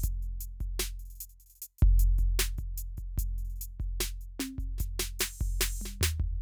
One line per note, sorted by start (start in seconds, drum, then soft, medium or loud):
0.01 closed hi-hat loud
0.01 kick medium
0.01 hi-hat pedal medium
0.22 closed hi-hat soft
0.41 closed hi-hat loud
0.60 kick medium
0.60 closed hi-hat soft
0.79 closed hi-hat loud
0.79 snare loud
0.99 closed hi-hat soft
1.05 closed hi-hat soft
1.10 closed hi-hat medium
1.20 closed hi-hat loud
1.29 closed hi-hat soft
1.40 closed hi-hat soft
1.46 closed hi-hat soft
1.55 closed hi-hat soft
1.62 closed hi-hat loud
1.78 kick loud
1.78 closed hi-hat medium
1.99 closed hi-hat loud
2.18 kick soft
2.18 closed hi-hat medium
2.39 closed hi-hat loud
2.39 snare loud
2.58 kick medium
2.58 closed hi-hat soft
2.78 closed hi-hat loud
2.97 kick soft
2.97 closed hi-hat soft
3.18 closed hi-hat loud
3.18 kick medium
3.38 closed hi-hat soft
3.45 closed hi-hat soft
3.50 closed hi-hat soft
3.56 closed hi-hat soft
3.61 closed hi-hat loud
3.80 kick medium
3.80 closed hi-hat soft
4.00 closed hi-hat loud
4.00 snare loud
4.21 closed hi-hat soft
4.40 snare medium
4.40 high tom loud
4.58 kick medium
4.58 closed hi-hat soft
4.78 closed hi-hat loud
4.78 kick medium
4.78 snare soft
4.99 closed hi-hat loud
4.99 snare loud
5.19 open hi-hat loud
5.19 snare loud
5.40 kick medium
5.40 open hi-hat soft
5.61 open hi-hat loud
5.61 snare loud
5.81 hi-hat pedal soft
5.81 mid tom medium
5.85 snare medium
6.01 snare loud
6.01 floor tom loud
6.20 kick medium